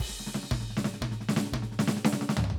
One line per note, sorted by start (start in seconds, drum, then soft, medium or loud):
0.00 kick medium
0.00 crash loud
0.09 snare soft
0.19 snare soft
0.26 snare medium
0.34 snare medium
0.43 snare medium
0.51 kick medium
0.51 high tom loud
0.60 snare soft
0.70 snare soft
0.77 snare loud
0.84 snare loud
0.93 snare soft
1.01 kick soft
1.01 high tom loud
1.11 snare medium
1.20 snare soft
1.29 snare loud
1.36 snare loud
1.45 snare soft
1.52 kick soft
1.52 high tom loud
1.62 snare medium
1.71 snare soft
1.79 snare loud
1.87 snare loud
1.96 snare medium
2.05 snare loud
2.12 snare loud
2.21 snare medium
2.29 snare loud
2.37 floor tom loud
2.44 floor tom medium
2.48 floor tom soft
2.50 floor tom loud